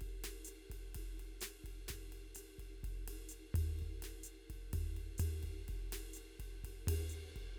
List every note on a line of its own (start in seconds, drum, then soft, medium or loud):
0.01 kick soft
0.01 ride soft
0.07 kick soft
0.24 snare soft
0.24 ride medium
0.45 hi-hat pedal medium
0.45 ride soft
0.70 kick soft
0.70 ride soft
0.75 kick soft
0.95 kick soft
0.95 snare soft
0.95 ride medium
1.01 kick soft
1.20 ride soft
1.41 snare soft
1.41 hi-hat pedal medium
1.41 ride medium
1.64 kick soft
1.64 ride soft
1.88 kick soft
1.88 snare soft
1.88 ride medium
1.95 kick soft
2.12 ride soft
2.35 snare soft
2.35 hi-hat pedal medium
2.35 ride medium
2.59 kick soft
2.59 ride soft
2.84 kick soft
2.84 ride soft
2.89 kick soft
3.08 snare soft
3.08 ride medium
3.29 hi-hat pedal medium
3.29 ride soft
3.54 kick soft
3.54 floor tom medium
3.54 ride medium
3.62 kick soft
3.79 kick soft
3.79 ride soft
3.87 kick soft
4.02 snare soft
4.02 ride medium
4.24 hi-hat pedal medium
4.24 ride soft
4.50 kick soft
4.50 ride soft
4.55 kick soft
4.73 kick soft
4.73 floor tom medium
4.73 ride medium
4.80 kick soft
4.97 ride soft
5.18 floor tom medium
5.18 hi-hat pedal medium
5.18 ride medium
5.43 kick soft
5.43 ride soft
5.48 kick soft
5.48 snare soft
5.68 kick soft
5.68 ride soft
5.74 kick soft
5.93 snare soft
5.93 ride medium
6.14 hi-hat pedal medium
6.14 ride soft
6.40 kick soft
6.40 ride soft
6.64 kick soft
6.64 ride soft
6.69 kick soft
6.88 floor tom medium
6.88 ride medium
7.10 hi-hat pedal medium
7.10 ride soft
7.22 snare soft
7.36 kick soft
7.36 ride soft
7.41 kick soft